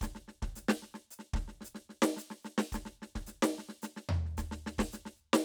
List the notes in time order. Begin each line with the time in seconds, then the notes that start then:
0.01 kick, snare, hi-hat pedal
0.15 snare
0.28 snare
0.42 kick, snare
0.56 snare, hi-hat pedal
0.69 snare
0.82 snare
0.94 snare
1.11 hi-hat pedal
1.19 snare
1.34 kick, snare
1.48 snare
1.61 snare, hi-hat pedal
1.75 snare
1.89 snare
2.02 snare
2.17 snare, hi-hat pedal
2.30 snare
2.42 snare, hi-hat pedal
2.58 snare
2.72 kick, snare, hi-hat pedal
2.85 snare
3.02 snare
3.15 kick, snare
3.26 snare, hi-hat pedal
3.42 snare
3.58 snare
3.69 snare
3.82 snare, hi-hat pedal
3.96 snare
4.09 floor tom
4.25 snare
4.37 kick, snare, hi-hat pedal
4.51 snare
4.66 snare
4.78 kick, snare
4.92 snare, hi-hat pedal
5.05 snare
5.16 hi-hat pedal
5.33 snare